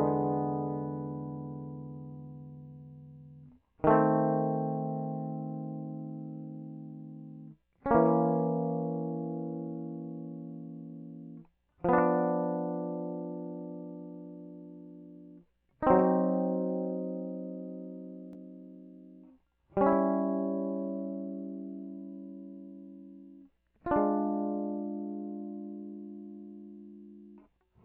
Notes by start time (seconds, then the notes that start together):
0.00 E2
3.85 D#3 A3
3.90 C4
7.86 C#4
7.91 A#3
7.96 E3
11.85 F3 B3
11.93 D4
15.83 D#4
15.87 C4
15.91 F#3
19.78 G3 C#4
19.87 E4
23.87 F4
23.92 D4
23.97 G#3